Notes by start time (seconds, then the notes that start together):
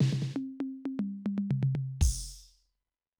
0.00 snare
0.12 snare
0.22 snare
0.36 high tom
0.60 high tom
0.85 high tom
0.99 mid tom
1.26 mid tom
1.38 mid tom
1.51 floor tom
1.63 floor tom
1.75 floor tom
2.01 kick, crash